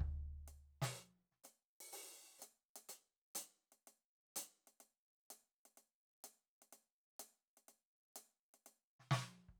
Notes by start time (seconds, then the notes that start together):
0.01 kick
0.48 closed hi-hat
0.82 open hi-hat, snare
1.32 snare
1.44 closed hi-hat, hi-hat pedal
1.81 open hi-hat
1.93 open hi-hat
2.39 closed hi-hat, hi-hat pedal
2.76 closed hi-hat
2.89 closed hi-hat
3.35 closed hi-hat
3.72 closed hi-hat
3.88 closed hi-hat
4.36 closed hi-hat
4.68 closed hi-hat
4.81 closed hi-hat
5.31 closed hi-hat
5.66 closed hi-hat
5.78 closed hi-hat
6.24 closed hi-hat
6.62 closed hi-hat
6.73 closed hi-hat
7.20 closed hi-hat
7.58 closed hi-hat
7.69 closed hi-hat
8.16 closed hi-hat
8.54 closed hi-hat
8.67 closed hi-hat
9.00 snare
9.11 snare
9.49 kick